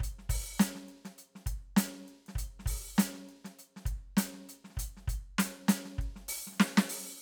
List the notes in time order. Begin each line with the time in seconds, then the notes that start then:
0.01 closed hi-hat, kick
0.20 snare
0.30 open hi-hat, kick
0.59 closed hi-hat, snare, hi-hat pedal
0.76 snare
0.89 closed hi-hat
1.06 snare, closed hi-hat
1.19 closed hi-hat
1.36 snare
1.47 kick, closed hi-hat
1.78 closed hi-hat, snare
1.96 snare
2.09 closed hi-hat
2.27 snare, closed hi-hat
2.36 closed hi-hat, kick
2.60 snare
2.67 open hi-hat, kick
2.97 closed hi-hat, snare, hi-hat pedal
3.14 snare
3.30 closed hi-hat
3.46 snare, closed hi-hat
3.60 closed hi-hat
3.77 snare
3.86 kick, closed hi-hat
4.18 closed hi-hat, snare
4.34 snare
4.50 closed hi-hat
4.65 snare
4.71 snare
4.75 kick, snare
4.79 closed hi-hat, snare
4.98 snare
5.08 closed hi-hat, kick
5.39 closed hi-hat, snare
5.69 closed hi-hat, snare
5.86 snare
5.99 kick, closed hi-hat
6.17 snare
6.29 open hi-hat
6.48 snare
6.53 snare, hi-hat pedal
6.57 snare
6.61 snare
6.78 snare
6.90 open hi-hat